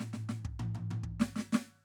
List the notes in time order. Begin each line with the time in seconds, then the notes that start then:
0.01 snare, floor tom, percussion
0.13 snare, floor tom
0.29 snare, floor tom
0.45 kick
0.60 floor tom, high tom
0.75 floor tom, high tom
0.91 floor tom, high tom
1.04 kick
1.20 snare
1.36 snare
1.39 snare
1.53 snare
1.55 snare